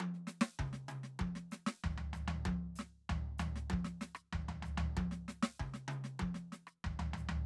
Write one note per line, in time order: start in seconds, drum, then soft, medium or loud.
0.00 high tom medium
0.14 snare soft
0.27 snare soft
0.27 hi-hat pedal medium
0.41 snare medium
0.59 kick soft
0.59 mid tom medium
0.68 kick soft
0.73 snare soft
0.88 hi-hat pedal soft
0.88 mid tom medium
1.03 snare soft
1.19 kick soft
1.19 high tom medium
1.27 kick soft
1.35 snare soft
1.51 snare soft
1.51 hi-hat pedal medium
1.66 snare medium
1.84 kick soft
1.84 floor tom medium
1.93 kick soft
1.98 floor tom medium
2.13 floor tom medium
2.13 hi-hat pedal soft
2.28 floor tom medium
2.45 kick soft
2.45 high tom loud
2.53 kick soft
2.76 snare soft
2.76 hi-hat pedal medium
3.09 kick soft
3.09 floor tom medium
3.38 floor tom medium
3.38 hi-hat pedal medium
3.56 snare soft
3.70 kick soft
3.70 high tom loud
3.79 kick soft
3.85 snare soft
4.01 snare soft
4.01 hi-hat pedal medium
4.15 cross-stick medium
4.33 kick soft
4.33 floor tom medium
4.42 kick soft
4.48 floor tom medium
4.62 floor tom medium
4.62 hi-hat pedal soft
4.77 floor tom medium
4.97 kick soft
4.97 high tom loud
5.05 kick soft
5.11 snare soft
5.28 snare soft
5.28 hi-hat pedal soft
5.43 snare medium
5.60 kick soft
5.60 mid tom medium
5.66 kick soft
5.74 snare soft
5.88 hi-hat pedal soft
5.88 mid tom loud
6.04 snare soft
6.19 kick soft
6.19 high tom medium
6.34 snare soft
6.52 snare soft
6.52 hi-hat pedal soft
6.67 cross-stick soft
6.84 kick soft
6.84 floor tom medium
6.92 kick soft
6.99 floor tom medium
7.13 floor tom medium
7.13 hi-hat pedal soft
7.29 floor tom medium